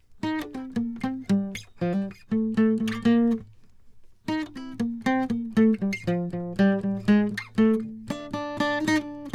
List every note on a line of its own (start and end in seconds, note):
0.23 0.39 D#4
0.40 0.55 D4
0.55 0.67 C4
0.77 1.03 A#3
1.04 1.26 C4
1.30 1.60 G3
1.82 1.94 F3
1.94 2.12 G3
2.32 2.54 A3
2.58 2.78 A3
2.79 3.02 A3
3.06 3.15 A#3
3.16 3.42 A#3
4.29 4.43 D#4
4.43 4.56 D4
4.56 4.83 C4
4.80 5.03 A#3
5.07 5.30 C4
5.30 5.50 A#3
5.57 5.78 A3
5.82 5.97 G3
6.08 6.30 F3
6.34 6.58 F3
6.59 6.82 G3
6.85 7.04 G3
7.08 7.31 G#3
7.58 7.80 A3
8.11 8.30 D4
8.34 8.61 D4
8.61 8.88 D4
8.88 8.98 D#4
8.98 9.30 D4